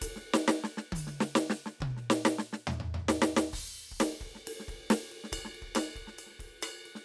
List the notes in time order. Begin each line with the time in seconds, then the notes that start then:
0.01 kick, hi-hat pedal, ride
0.09 kick
0.16 snare
0.34 snare
0.48 snare
0.64 snare
0.77 snare
0.92 kick, hi-hat pedal, high tom
0.99 kick
1.07 snare
1.20 snare
1.35 snare
1.50 snare
1.66 snare
1.80 kick, mid tom
1.87 kick
1.90 kick
1.97 snare
2.10 snare
2.25 snare
2.39 snare, hi-hat pedal
2.53 snare
2.67 hi-hat pedal, floor tom
2.80 floor tom
2.94 floor tom
3.08 snare
3.22 snare
3.37 snare
3.52 kick, hi-hat pedal, crash
3.60 kick
3.63 kick
3.91 kick
3.97 kick, snare, ride
4.03 hi-hat pedal
4.21 kick, ride
4.35 snare
4.46 hi-hat pedal, ride
4.60 snare
4.68 kick, ride
4.74 kick
4.90 snare, hi-hat pedal, ride
5.12 ride
5.24 snare
5.32 kick, hi-hat pedal, ride bell
5.39 kick
5.45 snare
5.55 ride
5.62 kick
5.67 kick
5.75 snare, hi-hat pedal, ride bell
5.95 kick, ride
6.01 kick
6.07 snare
6.18 hi-hat pedal, ride bell
6.26 snare
6.30 snare
6.34 snare
6.39 kick, ride
6.61 cross-stick, hi-hat pedal, ride bell
6.85 ride
6.95 snare